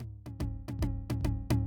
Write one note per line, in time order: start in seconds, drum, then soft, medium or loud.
0.00 floor tom medium
0.26 floor tom medium
0.26 high tom medium
0.40 kick soft
0.40 floor tom medium
0.40 high tom medium
0.68 floor tom medium
0.68 high tom medium
0.79 kick soft
0.79 floor tom medium
0.79 high tom loud
1.10 floor tom loud
1.10 high tom medium
1.21 kick soft
1.21 floor tom medium
1.21 high tom loud
1.50 floor tom loud
1.50 high tom loud